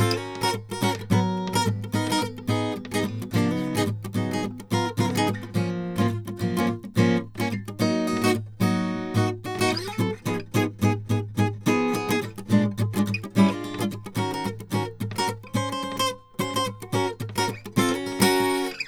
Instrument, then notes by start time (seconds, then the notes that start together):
acoustic guitar
0.00 C4 F4 A4
0.13 C#4 F#4
0.18 A#4
0.43 C#4 F#4 A#4
0.73 F#4 A#4
0.83 C#4 F#4 A#4
1.12 F#3 B3 A#4
1.55 B3 A#4
1.94 B3 D#4 A#4
2.12 B3 D#4 A#4
2.49 B3 D#4 G#4
2.93 B3 D#4 G#4
3.03 A2
3.33 C3 F3 A#3 D4
3.39 G4
3.48 B3 G#4
3.53 C#3 D#4
3.76 B3 D#4 G#4
4.15 C#3 F#3 B3 D#4
4.19 G#4
4.33 B3 D#4 G#4
4.72 F3 B3 F4 A#4
4.99 C#3 F#3 B3 F4 A#4
5.16 B3 D#4 G#4
5.44 F4
5.57 F#2 F3 A#3 C#4
5.97 C#4 F4
6.02 F3 A#3
6.11 E2
6.29 C#4 F4
6.39 F#2 F3 A#3
6.53 F3
6.58 A#3 C#4 F4
6.99 F3 A#3 C#4 F4
7.39 A#3 C#4 F4
7.80 F#3 A#3 D#4 F#4
8.09 D#4 F#4
8.26 A#3 D#4 F#4
8.62 F#3 A#3 D#4 F#4
9.16 A#3 D#4 F#4
9.46 A#3 D#4 F#4
9.63 A#3 D#4 F#4
10.00 F#3 C4 A4
10.27 F3 B3 D#4 G#4
10.55 F3 B3 D#4 G#4
10.82 F3 B3 D#4 G#4
11.11 B3 D#4 G#4
11.39 B3 D#4 G#4
11.68 F3 B3 D#4 G#4
11.93 B3 D#4 G#4
12.11 B3 D#4 G#4
12.52 A#2 G#3 D4 F4
12.96 D4 F4
13.00 G#3
13.26 E4
13.33 A2
13.38 G3 C#4 E4
13.50 A#2 G#3 D4 F4
13.66 F4
13.83 G#3 D4 F4
14.16 D#3 C#4 F#4 A#4
14.33 F#4 A#4
14.47 A#4
14.72 D#3 C#4 F#4 A#4
15.02 A#4
15.17 C#4 F#4 A#4
15.45 C5
15.56 C#4 C5
15.70 C5
15.84 C5
15.98 C5
16.40 C#4 C5
16.55 C5
16.82 A#4
16.95 C#4 F#4 A#4
17.22 A#4
17.37 C#4 F#4 A#4
17.67 A4
17.78 D3 C4 F4 A4
17.93 C#4 F#4
18.08 D#3 A#4
18.22 C#4 F#4 A#4